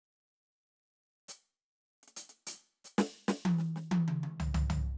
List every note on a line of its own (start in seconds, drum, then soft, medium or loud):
1.28 hi-hat pedal loud
2.03 closed hi-hat soft
2.08 closed hi-hat soft
2.17 closed hi-hat loud
2.29 closed hi-hat medium
2.47 open hi-hat loud
2.84 hi-hat pedal medium
2.98 snare loud
3.28 snare loud
3.45 high tom loud
3.59 snare soft
3.76 snare soft
3.91 high tom loud
4.08 mid tom medium
4.23 mid tom medium
4.40 floor tom medium
4.54 floor tom loud
4.70 floor tom loud